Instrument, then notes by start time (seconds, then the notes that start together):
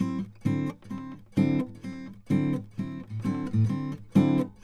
acoustic guitar
0.01 F#3 C4 E4
0.46 D3 F#3 C4 E4
0.91 D3 F#3 C4 E4
1.38 D3 F#3 C4 E4
1.77 D3
1.85 F#3 C4 E4
2.31 D3 F#3 C4 E4
2.79 D3 F#3 C4 E4
3.25 D3 D#3 C4 E4
3.54 A2
3.70 D3 G3 C4 E4
4.17 D3 F#3 C4 E4